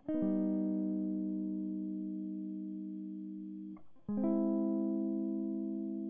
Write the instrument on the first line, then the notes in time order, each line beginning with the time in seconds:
electric guitar
0.09 D#4
0.14 B3
0.23 G3
4.09 G#3
4.17 C4
4.24 E4